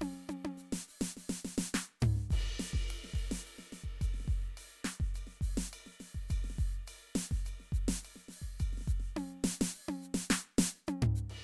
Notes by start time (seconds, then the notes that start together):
0.01 hi-hat pedal, high tom
0.13 snare
0.29 hi-hat pedal, high tom
0.45 high tom
0.57 snare, hi-hat pedal
0.72 snare
0.88 hi-hat pedal
1.01 snare
1.17 snare, hi-hat pedal
1.29 snare
1.45 snare, hi-hat pedal
1.58 snare
1.74 snare, hi-hat pedal
2.00 floor tom, hi-hat pedal
2.16 snare
2.30 kick, hi-hat pedal, ride
2.46 kick
2.59 snare, hi-hat pedal
2.73 kick, snare
2.87 hi-hat pedal, ride
3.04 snare
3.14 kick, hi-hat pedal, ride
3.30 snare, ride
3.44 hi-hat pedal, ride bell
3.58 snare
3.72 snare, hi-hat pedal, ride
3.84 kick, ride
4.01 kick, hi-hat pedal, ride bell
4.14 snare
4.20 snare
4.25 kick, snare
4.29 hi-hat pedal, ride
4.42 snare, ride
4.57 hi-hat pedal, ride bell
4.84 snare, hi-hat pedal
5.00 kick, snare
5.14 hi-hat pedal, ride bell
5.27 snare
5.41 kick, hi-hat pedal, ride
5.57 snare, ride
5.71 hi-hat pedal, ride bell
5.86 snare
5.99 snare, hi-hat pedal, ride
6.15 kick, ride
6.29 kick, hi-hat pedal, ride bell
6.44 snare
6.50 snare
6.56 kick, snare, hi-hat pedal, ride
6.72 ride
6.87 hi-hat pedal, ride bell
7.15 snare, hi-hat pedal, ride
7.31 kick, snare
7.45 hi-hat pedal, ride bell
7.60 snare
7.72 kick, hi-hat pedal, ride
7.88 snare, ride
8.02 hi-hat pedal, ride bell
8.16 snare
8.28 snare, hi-hat pedal, ride
8.42 kick, ride
8.59 kick, hi-hat pedal, ride bell
8.73 snare
8.77 snare
8.81 snare
8.88 kick, hi-hat pedal, ride
9.00 snare
9.16 hi-hat pedal, high tom
9.44 snare, hi-hat pedal
9.61 snare
9.73 hi-hat pedal
9.88 open hi-hat, high tom
10.02 hi-hat pedal
10.14 snare
10.30 snare, hi-hat pedal
10.58 snare, hi-hat pedal
10.87 closed hi-hat, hi-hat pedal, high tom
11.02 floor tom
11.15 hi-hat pedal
11.30 ride